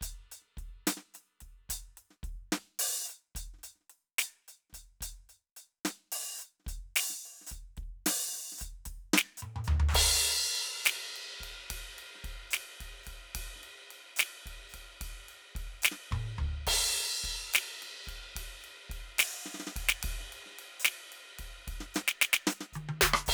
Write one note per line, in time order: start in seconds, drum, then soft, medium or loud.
0.01 closed hi-hat medium
0.01 kick soft
0.31 closed hi-hat soft
0.41 snare soft
0.57 kick soft
0.57 closed hi-hat soft
0.87 closed hi-hat loud
0.87 snare medium
1.14 snare soft
1.14 closed hi-hat soft
1.14 hi-hat pedal soft
1.40 kick soft
1.40 closed hi-hat soft
1.69 closed hi-hat medium
1.69 kick soft
1.97 closed hi-hat soft
2.10 snare soft
2.23 kick soft
2.23 closed hi-hat soft
2.29 kick soft
2.52 snare medium
2.52 closed hi-hat soft
2.79 open hi-hat loud
3.05 closed hi-hat soft
3.05 hi-hat pedal medium
3.35 closed hi-hat medium
3.35 kick soft
3.54 snare soft
3.59 snare soft
3.63 closed hi-hat soft
3.63 snare soft
3.76 snare soft
3.81 snare soft
3.90 closed hi-hat soft
4.18 closed hi-hat loud
4.18 snare medium
4.48 closed hi-hat soft
4.70 kick soft
4.70 snare soft
4.74 closed hi-hat soft
4.74 snare soft
5.01 closed hi-hat medium
5.01 kick soft
5.29 closed hi-hat soft
5.56 closed hi-hat soft
5.85 closed hi-hat medium
5.85 snare medium
6.12 open hi-hat loud
6.38 closed hi-hat soft
6.38 hi-hat pedal medium
6.60 snare soft
6.64 kick soft
6.64 snare soft
6.67 closed hi-hat soft
6.67 snare soft
6.72 kick soft
6.96 open hi-hat loud
6.96 snare medium
7.10 snare soft
7.25 open hi-hat soft
7.41 snare soft
7.46 snare soft
7.46 hi-hat pedal medium
7.49 closed hi-hat soft
7.49 kick soft
7.49 snare soft
7.77 kick soft
7.77 closed hi-hat soft
7.83 kick soft
8.06 open hi-hat loud
8.06 snare medium
8.33 open hi-hat soft
8.33 snare soft
8.52 snare soft
8.56 snare soft
8.56 hi-hat pedal medium
8.61 closed hi-hat soft
8.61 kick soft
8.85 kick soft
8.85 closed hi-hat medium
9.13 snare loud
9.18 snare loud
9.37 hi-hat pedal medium
9.42 mid tom medium
9.56 mid tom medium
9.64 floor tom loud
9.64 hi-hat pedal soft
9.80 floor tom loud
9.89 percussion medium
9.89 hi-hat pedal soft
9.94 kick soft
9.94 crash loud
10.01 kick soft
10.55 ride soft
10.85 snare loud
10.85 hi-hat pedal medium
10.85 ride loud
11.16 ride soft
11.39 kick soft
11.39 snare soft
11.43 ride medium
11.70 kick soft
11.70 ride loud
11.98 ride medium
12.15 snare soft
12.21 kick soft
12.21 snare soft
12.21 ride medium
12.51 snare medium
12.51 hi-hat pedal medium
12.51 ride loud
12.80 kick soft
12.80 ride medium
13.03 kick soft
13.03 hi-hat pedal soft
13.03 ride medium
13.35 kick soft
13.35 ride loud
13.56 snare soft
13.61 snare soft
13.61 ride soft
13.91 ride medium
14.16 snare loud
14.16 hi-hat pedal medium
14.16 ride loud
14.46 kick soft
14.46 snare soft
14.46 ride soft
14.69 hi-hat pedal soft
14.74 kick soft
14.74 ride medium
15.01 kick soft
15.01 ride medium
15.28 hi-hat pedal soft
15.28 ride soft
15.55 kick soft
15.55 ride medium
15.82 snare loud
15.82 hi-hat pedal medium
15.82 ride loud
15.91 snare soft
16.11 kick soft
16.11 mid tom loud
16.38 kick soft
16.38 floor tom loud
16.45 kick soft
16.67 kick soft
16.67 crash loud
16.73 kick soft
17.22 kick soft
17.22 snare soft
17.22 ride medium
17.53 snare loud
17.53 hi-hat pedal medium
17.53 ride loud
17.77 hi-hat pedal soft
17.82 snare soft
17.82 ride medium
17.93 snare soft
18.04 kick soft
18.04 hi-hat pedal soft
18.09 ride medium
18.36 kick soft
18.36 ride medium
18.61 hi-hat pedal soft
18.61 ride soft
18.90 kick soft
18.90 ride medium
19.18 snare loud
19.18 hi-hat pedal loud
19.18 ride loud
19.46 snare soft
19.54 snare soft
19.60 snare soft
19.67 snare soft
19.76 kick soft
19.76 ride medium
19.89 snare loud
20.03 kick soft
20.03 ride loud
20.11 kick soft
20.20 snare soft
20.32 ride medium
20.46 snare soft
20.51 snare soft
20.59 ride medium
20.80 hi-hat pedal medium
20.85 snare loud
20.85 ride loud
21.12 ride medium
21.39 kick soft
21.39 ride medium
21.68 kick soft
21.68 ride medium
21.73 kick soft
21.80 snare soft
21.94 snare medium
21.94 hi-hat pedal medium
22.08 snare loud
22.21 snare loud
22.21 hi-hat pedal medium
22.33 snare loud
22.47 snare loud
22.47 hi-hat pedal medium
22.61 snare soft
22.73 kick soft
22.73 hi-hat pedal soft
22.73 high tom medium
22.89 high tom medium
23.01 kick soft
23.01 snare loud
23.01 hi-hat pedal medium
23.14 cross-stick loud
23.26 kick soft
23.26 hi-hat pedal medium
23.26 crash loud